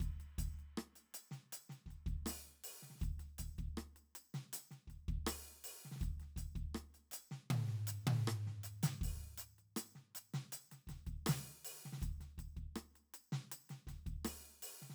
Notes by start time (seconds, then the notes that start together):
0.01 kick, percussion
0.03 percussion
0.21 percussion
0.26 snare
0.39 kick, percussion
0.60 percussion
0.78 cross-stick, percussion
0.96 percussion
1.15 percussion
1.32 snare, percussion
1.53 percussion
1.70 snare, percussion
1.87 kick, snare
1.91 percussion
2.07 kick, percussion
2.27 cross-stick, percussion
2.30 cross-stick
2.48 snare
2.65 percussion
2.83 snare
2.91 snare
2.96 snare
3.01 kick, percussion
3.04 percussion
3.20 snare, percussion
3.39 kick, percussion
3.59 kick, percussion
3.78 cross-stick, percussion
3.97 percussion
4.16 percussion
4.35 snare, percussion
4.54 percussion
4.72 snare, percussion
4.88 kick, snare, percussion
5.09 kick, percussion
5.28 cross-stick, percussion
5.65 percussion
5.86 snare
5.92 snare
5.97 snare, percussion
6.02 kick, percussion
6.21 snare, percussion
6.37 kick, percussion
6.56 kick, percussion
6.75 cross-stick, percussion
6.95 percussion
7.12 percussion
7.14 percussion
7.32 snare
7.51 high tom, percussion
7.69 snare
7.88 snare, percussion
8.08 high tom
8.28 cross-stick
8.48 snare
8.64 percussion
8.66 percussion
8.84 snare, percussion
9.02 kick, percussion
9.16 snare
9.39 percussion
9.42 percussion
9.59 percussion
9.77 cross-stick, percussion
9.96 snare
10.16 percussion
10.35 snare, percussion
10.53 percussion
10.72 snare, percussion
10.88 kick, snare, percussion
11.08 kick, percussion
11.27 cross-stick, snare, percussion
11.52 snare
11.55 snare
11.66 percussion
11.86 snare
11.93 snare
11.99 snare, percussion
12.03 kick, percussion
12.21 snare, percussion
12.39 kick, percussion
12.58 kick, percussion
12.77 cross-stick, percussion
12.96 percussion
13.15 percussion
13.33 snare, percussion
13.53 percussion
13.70 snare, percussion
13.88 kick, snare, percussion
14.07 kick, percussion
14.25 cross-stick, percussion
14.63 percussion
14.83 snare
14.91 snare